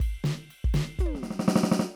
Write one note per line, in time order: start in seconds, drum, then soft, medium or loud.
0.00 kick medium
0.00 ride medium
0.24 snare loud
0.24 ride medium
0.50 ride medium
0.64 kick medium
0.74 snare loud
0.74 ride medium
0.99 kick medium
0.99 floor tom loud
0.99 hi-hat pedal medium
1.06 high tom medium
1.15 snare soft
1.23 snare medium
1.23 hi-hat pedal medium
1.31 snare medium
1.39 snare medium
1.47 snare loud
1.47 hi-hat pedal soft
1.56 snare loud
1.63 snare loud
1.71 snare loud
1.71 hi-hat pedal medium
1.79 snare loud